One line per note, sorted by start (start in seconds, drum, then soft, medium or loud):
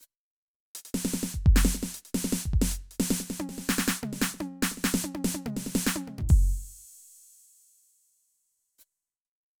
0.00 hi-hat pedal medium
0.75 closed hi-hat loud
0.94 snare loud
1.05 snare loud
1.14 snare loud
1.23 snare medium
1.34 kick medium
1.46 kick loud
1.56 snare loud
1.65 snare loud
1.75 snare medium
1.83 snare medium
1.94 closed hi-hat loud
2.05 closed hi-hat medium
2.14 snare loud
2.24 snare loud
2.32 snare loud
2.46 kick medium
2.53 kick medium
2.62 snare loud
2.71 closed hi-hat loud
2.91 closed hi-hat medium
3.00 snare loud
3.10 snare loud
3.20 snare medium
3.30 snare medium
3.40 high tom loud
3.49 snare medium
3.58 snare medium
3.69 snare loud
3.78 snare loud
3.88 snare loud
4.03 mid tom loud
4.13 snare medium
4.21 snare loud
4.34 snare soft
4.40 high tom loud
4.62 snare loud
4.62 hi-hat pedal medium
4.71 snare soft
4.77 snare soft
4.84 snare loud
4.94 snare loud
5.04 high tom loud
5.15 high tom loud
5.24 snare loud
5.35 high tom loud
5.46 mid tom loud
5.57 snare medium
5.66 snare medium
5.75 snare loud
5.87 snare loud
5.96 high tom loud
6.07 mid tom medium
6.18 kick medium
6.18 floor tom medium
6.29 kick loud
6.29 crash loud
6.51 crash soft
8.78 hi-hat pedal medium
9.25 closed hi-hat soft